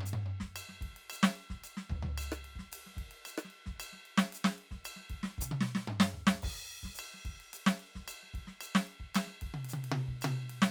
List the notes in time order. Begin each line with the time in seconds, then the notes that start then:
0.01 mid tom
0.06 hi-hat pedal
0.14 mid tom
0.26 mid tom
0.41 kick, snare
0.56 hi-hat pedal, ride bell
0.69 snare
0.81 kick, snare, ride
0.87 kick, snare
0.91 snare
0.96 snare, ride
1.10 hi-hat pedal, ride bell
1.23 snare
1.36 ride
1.50 kick, snare
1.56 kick
1.64 hi-hat pedal, ride bell
1.77 snare
1.90 kick, floor tom
1.98 kick
2.03 floor tom
2.18 hi-hat pedal, ride bell
2.32 cross-stick
2.45 ride
2.56 kick, snare
2.72 hi-hat pedal, ride
2.87 snare
2.96 kick, snare, ride
3.11 ride
3.26 hi-hat pedal, ride bell
3.38 cross-stick
3.45 snare
3.51 ride
3.66 kick, snare
3.80 hi-hat pedal, ride bell
3.93 snare
4.06 ride
4.18 snare
4.33 hi-hat pedal, ride
4.45 snare
4.59 ride
4.71 kick, snare
4.85 hi-hat pedal, ride bell
4.97 snare
5.10 kick, ride
5.24 snare
5.38 kick, hi-hat pedal
5.43 high tom
5.52 high tom
5.61 snare
5.75 snare
5.88 mid tom
6.00 snare
6.13 floor tom
6.27 snare
6.36 snare
6.43 kick, cross-stick, crash
6.57 kick
6.83 kick, snare
6.95 hi-hat pedal
6.99 ride bell
7.14 snare
7.25 kick, snare, ride
7.30 kick, snare
7.33 snare
7.41 ride
7.54 hi-hat pedal, ride
7.67 snare
7.80 ride
7.96 kick, snare
8.01 kick
8.08 hi-hat pedal, ride bell
8.23 snare
8.34 kick, ride
8.41 kick
8.48 snare
8.61 hi-hat pedal, ride bell
8.75 snare
8.87 ride
9.00 kick
9.15 snare, hi-hat pedal, ride bell
9.27 snare
9.42 kick, ride
9.48 kick
9.54 high tom
9.65 ride
9.69 hi-hat pedal
9.74 high tom
9.85 ride
9.92 high tom
10.08 kick
10.22 hi-hat pedal, high tom, ride bell
10.50 ride
10.62 snare